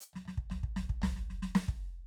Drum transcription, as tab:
HH |p---------------|
SD |-oo-o-o-ooooo---|
FT |-oo-o-o-o-------|
BD |---o-o-o-----o--|